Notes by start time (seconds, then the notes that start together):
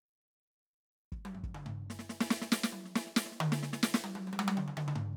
1.12 kick
1.25 high tom
1.35 floor tom
1.44 kick
1.55 mid tom
1.66 floor tom
1.90 snare
1.99 snare
2.09 snare
2.21 snare
2.31 snare
2.42 snare
2.52 snare
2.63 snare
2.72 high tom
2.85 snare
2.96 snare
3.06 snare
3.16 snare
3.26 snare
3.32 snare
3.37 snare, mid tom
3.52 snare
3.63 snare
3.83 snare
3.94 snare
4.04 high tom
4.15 high tom
4.27 high tom
4.33 high tom
4.39 high tom
4.48 high tom
4.57 mid tom
4.68 mid tom
4.77 mid tom
4.88 mid tom
4.96 floor tom
5.13 kick